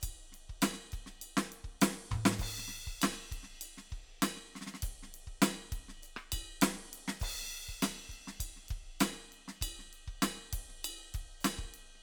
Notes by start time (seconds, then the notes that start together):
0.01 kick, hi-hat pedal, ride bell
0.09 kick
0.32 snare, ride
0.49 kick
0.61 snare, hi-hat pedal, ride bell
0.73 snare
0.92 kick, ride
0.99 kick
1.06 snare
1.21 hi-hat pedal, ride bell
1.37 snare
1.52 ride
1.64 kick
1.81 snare, hi-hat pedal, ride
1.91 snare
2.11 kick, mid tom
2.25 snare
2.31 snare
2.38 kick, hi-hat pedal, crash
2.46 kick
2.58 snare
2.68 snare
2.87 kick
3.01 snare, hi-hat pedal, ride bell
3.12 snare
3.31 kick, ride
3.37 kick
3.43 snare
3.53 snare
3.61 hi-hat pedal, ride bell
3.77 snare
3.90 kick, ride
4.22 snare, hi-hat pedal, ride bell
4.36 snare
4.55 snare
4.61 snare
4.66 snare
4.74 snare
4.82 kick, snare, hi-hat pedal, ride
4.94 kick
5.03 snare
5.06 snare
5.14 ride
5.27 kick
5.42 snare, hi-hat pedal, ride bell
5.51 snare
5.72 kick, ride
5.79 kick
5.88 snare
6.02 hi-hat pedal, ride
6.16 cross-stick
6.32 kick, ride bell
6.39 kick
6.42 kick
6.61 snare, hi-hat pedal, ride
6.72 snare
6.93 ride
7.08 snare
7.20 kick, hi-hat pedal, crash
7.34 kick
7.41 snare
7.46 snare
7.50 snare
7.68 kick
7.82 snare, hi-hat pedal, ride bell
8.09 kick, ride
8.27 snare
8.40 kick, hi-hat pedal, ride bell
8.56 snare
8.63 snare
8.68 kick, ride
8.78 kick
9.00 snare, hi-hat pedal, ride bell
9.12 snare
9.32 ride
9.48 snare
9.61 kick, hi-hat pedal, ride bell
9.68 kick
9.79 snare
9.84 snare
9.88 snare
9.93 ride
10.07 kick
10.22 snare, hi-hat pedal, ride bell
10.35 snare
10.53 kick, ride
10.60 kick
10.69 snare
10.84 hi-hat pedal, ride bell
11.14 kick, ride
11.21 kick
11.23 kick
11.40 hi-hat pedal
11.44 snare, ride bell
11.56 kick, snare
11.64 kick
11.74 ride
11.94 snare